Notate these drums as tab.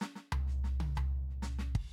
RD |-----------x|
HH |p--p-xp--p--|
SD |oo-oo---ooo-|
T1 |-----o------|
FT |--o---o-----|
BD |-----------o|